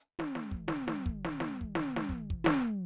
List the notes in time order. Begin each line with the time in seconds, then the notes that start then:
0.00 hi-hat pedal
0.18 snare, floor tom
0.35 snare, floor tom
0.51 kick
0.67 snare, floor tom
0.87 snare, floor tom
1.06 kick
1.24 snare, floor tom
1.40 snare, floor tom
1.61 kick
1.75 snare, floor tom
1.95 snare, floor tom
2.09 kick
2.30 kick
2.43 snare, floor tom